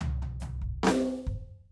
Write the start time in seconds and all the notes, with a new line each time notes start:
0.01 floor tom, high tom
0.22 floor tom, high tom
0.40 floor tom, hi-hat pedal, high tom
0.61 kick
0.83 snare
0.87 snare
1.27 kick